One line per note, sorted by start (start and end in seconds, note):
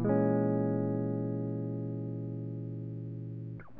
0.00 3.62 A#2
0.00 3.51 E3
0.06 3.41 G#3
0.10 3.15 C#4